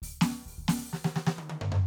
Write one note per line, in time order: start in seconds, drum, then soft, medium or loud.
0.03 open hi-hat medium
0.03 kick soft
0.22 open hi-hat medium
0.22 snare loud
0.47 open hi-hat medium
0.47 kick soft
0.59 kick soft
0.69 open hi-hat loud
0.69 snare loud
0.94 snare medium
1.05 snare loud
1.16 snare medium
1.27 snare loud
1.39 high tom loud
1.50 high tom loud
1.62 floor tom loud
1.72 floor tom loud